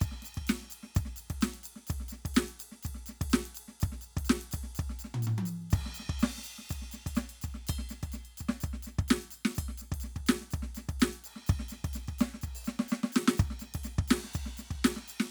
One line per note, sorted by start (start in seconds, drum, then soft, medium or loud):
0.01 kick loud
0.01 percussion medium
0.01 ride medium
0.12 snare soft
0.23 snare soft
0.23 ride medium
0.23 percussion medium
0.35 kick medium
0.35 ride medium
0.48 snare loud
0.48 ride medium
0.48 percussion medium
0.63 snare soft
0.71 ride medium
0.71 percussion medium
0.84 snare soft
0.96 kick loud
0.96 ride medium
0.96 percussion medium
1.06 snare soft
1.17 ride medium
1.17 percussion medium
1.31 kick medium
1.31 ride medium
1.42 snare loud
1.42 percussion medium
1.54 ride medium
1.64 ride medium
1.64 percussion medium
1.76 snare soft
1.88 kick medium
1.88 ride medium
1.88 percussion medium
2.01 snare soft
2.09 snare soft
2.09 percussion medium
2.26 kick medium
2.26 ride medium
2.35 snare loud
2.35 percussion medium
2.49 ride medium
2.60 ride loud
2.60 percussion medium
2.72 snare soft
2.83 kick medium
2.83 ride medium
2.83 percussion medium
2.95 snare soft
3.07 snare soft
3.07 percussion medium
3.22 kick medium
3.22 ride loud
3.31 snare loud
3.31 percussion medium
3.46 ride medium
3.55 ride medium
3.55 percussion medium
3.69 snare soft
3.81 kick loud
3.81 ride medium
3.81 percussion medium
3.93 snare soft
4.02 percussion medium
4.17 kick medium
4.17 ride medium
4.25 percussion medium
4.30 snare loud
4.42 ride medium
4.52 kick medium
4.52 ride loud
4.52 percussion medium
4.64 snare soft
4.76 ride medium
4.76 percussion medium
4.80 kick medium
4.90 snare soft
5.00 percussion medium
5.05 snare soft
5.15 floor tom loud
5.23 percussion medium
5.28 floor tom loud
5.39 high tom loud
5.46 ride medium
5.46 percussion medium
5.71 kick loud
5.71 percussion medium
5.71 ride medium
5.86 snare soft
5.95 percussion medium
6.00 snare soft
6.10 kick medium
6.20 snare loud
6.20 crash medium
6.20 percussion medium
6.38 snare soft
6.44 ride soft
6.44 percussion medium
6.59 snare soft
6.70 kick medium
6.70 ride medium
6.70 percussion medium
6.82 snare soft
6.92 snare soft
6.92 percussion medium
7.07 kick medium
7.07 ride bell medium
7.16 snare loud
7.16 percussion medium
7.30 ride bell medium
7.42 kick medium
7.42 ride bell soft
7.42 percussion medium
7.55 snare soft
7.67 kick loud
7.67 ride bell loud
7.67 percussion medium
7.79 snare soft
7.90 snare soft
7.90 percussion medium
8.04 kick medium
8.04 ride bell soft
8.13 snare soft
8.13 percussion medium
8.26 ride bell soft
8.38 kick medium
8.38 ride bell soft
8.38 percussion medium
8.49 snare loud
8.61 kick medium
8.61 ride bell soft
8.61 percussion medium
8.74 snare soft
8.83 percussion medium
8.87 snare soft
8.87 ride bell soft
8.99 kick loud
8.99 ride bell soft
9.09 snare loud
9.09 percussion medium
9.23 ride bell soft
9.31 ride bell soft
9.31 percussion medium
9.46 snare loud
9.56 kick medium
9.56 ride bell medium
9.56 percussion medium
9.69 snare soft
9.78 snare soft
9.78 ride soft
9.78 percussion medium
9.92 kick medium
9.92 ride medium
10.01 snare soft
10.01 percussion medium
10.17 kick medium
10.17 ride soft
10.27 snare loud
10.27 ride medium
10.27 percussion medium
10.42 snare soft
10.51 kick medium
10.51 ride medium
10.51 percussion medium
10.63 snare medium
10.75 snare medium
10.75 ride soft
10.75 percussion medium
10.89 kick medium
10.89 ride medium
11.01 snare loud
11.01 percussion medium
11.14 ride medium
11.25 percussion medium
11.25 ride medium
11.36 snare soft
11.47 kick loud
11.47 ride medium
11.47 percussion medium
11.60 snare medium
11.69 snare soft
11.69 ride soft
11.69 percussion medium
11.85 kick medium
11.85 ride medium
11.94 snare soft
11.94 percussion medium
12.08 kick medium
12.08 ride soft
12.19 snare loud
12.19 ride medium
12.19 percussion medium
12.35 snare soft
12.42 kick medium
12.42 percussion medium
12.42 ride soft
12.56 percussion medium
12.65 snare medium
12.65 percussion medium
12.80 snare loud
12.89 snare loud
12.89 percussion medium
13.04 snare loud
13.13 snare loud
13.13 percussion medium
13.28 snare loud
13.38 kick loud
13.38 percussion medium
13.38 ride soft
13.51 snare soft
13.60 snare soft
13.60 percussion medium
13.75 kick medium
13.75 ride medium
13.84 snare medium
13.84 percussion medium
13.99 kick loud
14.08 snare loud
14.08 crash medium
14.08 percussion medium
14.25 snare soft
14.34 kick medium
14.34 percussion medium
14.46 snare soft
14.58 snare soft
14.58 ride medium
14.58 percussion medium
14.71 kick medium
14.71 ride soft
14.85 snare loud
14.85 percussion medium
14.85 ride medium
14.97 snare medium
15.09 ride medium
15.09 percussion medium
15.21 snare medium